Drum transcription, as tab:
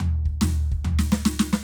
SD |---o---ooooo|
FT |o--o--o-----|
BD |--o--o------|